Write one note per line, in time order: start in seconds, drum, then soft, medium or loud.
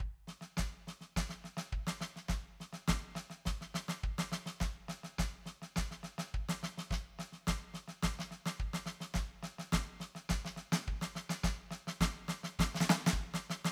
0.00 kick medium
0.28 snare soft
0.41 snare soft
0.57 kick medium
0.57 snare medium
0.88 snare medium
1.01 snare soft
1.17 kick medium
1.17 snare loud
1.30 snare soft
1.44 snare soft
1.57 snare medium
1.73 kick medium
1.87 snare medium
2.01 snare medium
2.16 snare soft
2.29 kick medium
2.29 snare medium
2.60 snare soft
2.73 snare medium
2.88 kick medium
2.88 snare loud
3.16 snare medium
3.30 snare soft
3.46 kick medium
3.46 snare medium
3.61 snare soft
3.75 snare medium
3.89 snare medium
4.04 kick medium
4.18 snare medium
4.32 snare medium
4.46 snare medium
4.61 kick medium
4.61 snare medium
4.89 snare medium
5.04 snare soft
5.19 kick medium
5.19 snare medium
5.46 snare medium
5.62 snare soft
5.76 kick medium
5.76 snare medium
5.91 snare soft
6.03 snare medium
6.18 snare medium
6.34 kick medium
6.49 snare loud
6.49 open hi-hat soft
6.63 snare medium
6.78 snare medium
6.91 kick medium
6.91 snare medium
7.19 snare medium
7.33 snare soft
7.47 kick medium
7.47 snare loud
7.74 snare medium
7.88 snare soft
8.03 kick medium
8.03 snare loud
8.19 snare medium
8.31 snare soft
8.46 snare medium
8.60 kick medium
8.74 snare medium
8.86 snare medium
9.01 snare medium
9.14 kick medium
9.14 snare medium
9.43 snare medium
9.59 snare medium
9.73 kick medium
9.73 snare loud
10.00 snare medium
10.15 snare soft
10.29 kick medium
10.29 snare loud
10.45 snare medium
10.57 snare soft
10.72 snare loud
10.88 kick medium
11.02 snare medium
11.16 snare medium
11.30 snare medium
11.44 kick medium
11.44 snare loud
11.71 snare medium
11.87 snare medium
12.01 kick medium
12.01 snare loud
12.28 snare medium
12.44 snare medium
12.59 kick medium
12.59 snare loud
12.59 open hi-hat soft
12.75 snare medium
12.81 snare loud
12.90 snare loud
13.07 snare loud
13.13 kick medium
13.34 snare medium
13.50 snare medium
13.65 snare loud